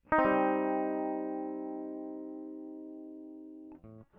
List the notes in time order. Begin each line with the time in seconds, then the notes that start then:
0.12 D#4
0.19 C4
0.25 G3